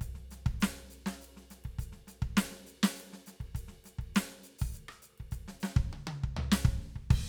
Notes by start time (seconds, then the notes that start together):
0.01 kick, hi-hat pedal, ride
0.15 snare
0.31 snare, hi-hat pedal, ride
0.46 kick, ride
0.60 snare, hi-hat pedal, ride
0.78 snare
0.90 hi-hat pedal, ride
1.06 snare, ride
1.21 hi-hat pedal, ride
1.37 snare
1.50 snare, hi-hat pedal, ride
1.64 kick, ride
1.79 kick, hi-hat pedal, ride
1.92 snare
2.07 snare, hi-hat pedal, ride
2.22 kick, ride
2.37 snare, hi-hat pedal, ride
2.51 snare
2.67 hi-hat pedal, ride
2.83 snare
2.96 hi-hat pedal
3.00 ride
3.13 snare
3.26 snare, hi-hat pedal, ride
3.40 kick, ride
3.55 kick, hi-hat pedal, ride
3.68 snare
3.84 snare, hi-hat pedal, ride
3.99 kick, ride
4.15 snare, hi-hat pedal, ride
4.31 snare
4.44 hi-hat pedal
4.59 open hi-hat, kick
4.74 hi-hat pedal, ride
4.89 cross-stick
5.02 snare, hi-hat pedal, ride
5.18 kick, ride
5.31 kick, hi-hat pedal, ride
5.48 snare
5.60 snare, hi-hat pedal
5.76 kick
5.93 high tom
6.07 high tom
6.24 kick
6.37 floor tom
6.52 snare
6.65 kick
6.96 kick
7.11 kick, crash